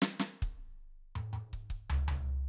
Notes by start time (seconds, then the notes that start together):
0.02 snare
0.20 snare
0.42 kick
1.16 mid tom
1.33 mid tom
1.53 kick
1.70 kick
1.90 floor tom
2.08 floor tom
2.23 hi-hat pedal